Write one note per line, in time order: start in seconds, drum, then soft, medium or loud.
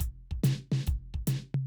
0.03 closed hi-hat loud
0.03 kick medium
0.31 kick soft
0.44 closed hi-hat loud
0.44 snare loud
0.72 snare loud
0.86 closed hi-hat medium
0.86 kick medium
0.86 snare soft
1.14 kick soft
1.27 closed hi-hat loud
1.27 snare loud
1.54 floor tom loud